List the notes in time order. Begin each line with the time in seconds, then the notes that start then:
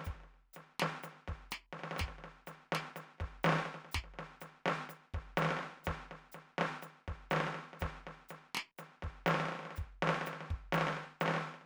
0.01 snare, hi-hat pedal
0.06 kick, snare
0.15 snare
0.20 snare
0.23 snare
0.34 snare
0.53 snare, hi-hat pedal
0.79 snare
0.82 snare
1.03 snare, hi-hat pedal
1.13 snare
1.28 kick, snare
1.51 snare, hi-hat pedal
1.73 snare
1.79 snare
1.83 snare
1.91 snare
1.96 snare, hi-hat pedal
1.99 kick, snare
2.06 kick, snare
2.18 snare
2.24 snare
2.46 snare, hi-hat pedal
2.72 snare
2.75 snare
2.96 snare, hi-hat pedal
3.04 snare
3.10 snare
3.18 snare
3.20 kick, snare
3.43 snare, hi-hat pedal
3.46 snare
3.49 snare
3.52 snare
3.55 snare
3.58 snare
3.65 snare
3.74 snare
3.85 snare
3.91 kick, snare, hi-hat pedal
4.04 snare
4.14 snare
4.19 snare
4.27 snare
4.40 snare, hi-hat pedal
4.66 snare
4.68 snare
4.89 snare, hi-hat pedal
5.02 snare
5.14 kick, snare
5.37 snare, hi-hat pedal
5.42 snare
5.45 snare
5.49 snare
5.51 snare
5.57 snare
5.63 snare
5.70 snare
5.77 snare
5.83 snare, hi-hat pedal
5.87 kick, snare
5.97 snare
6.05 snare
6.11 snare
6.32 snare, hi-hat pedal
6.58 snare
6.61 snare
6.82 snare, hi-hat pedal
7.00 snare
7.08 kick, snare
7.30 snare, hi-hat pedal
7.33 snare
7.36 snare
7.40 snare
7.44 snare
7.47 snare
7.53 snare
7.54 snare
7.59 snare
7.64 snare
7.73 snare
7.79 kick, snare, hi-hat pedal
7.89 snare
7.96 snare
8.02 snare
8.06 snare
8.18 snare
8.21 snare
8.28 snare, hi-hat pedal
8.55 snare
8.57 snare
8.78 snare, hi-hat pedal
8.89 snare
8.94 snare
9.02 kick, snare
9.26 snare, hi-hat pedal
9.28 snare
9.31 snare
9.34 snare
9.40 snare
9.45 snare
9.48 snare
9.52 snare
9.55 snare
9.59 snare
9.63 snare
9.71 snare
9.76 kick, snare, hi-hat pedal
10.02 snare
10.07 snare
10.09 snare
10.14 snare
10.21 snare
10.26 snare, hi-hat pedal
10.33 snare
10.40 snare
10.46 snare
10.50 kick, snare
10.72 snare, hi-hat pedal
10.74 snare
10.78 snare
10.81 snare
10.87 snare
10.93 snare
10.97 snare
11.03 snare
11.20 snare, hi-hat pedal
11.26 snare
11.28 snare
11.31 snare
11.34 snare
11.36 snare
11.41 snare
11.47 snare
11.54 snare
11.61 snare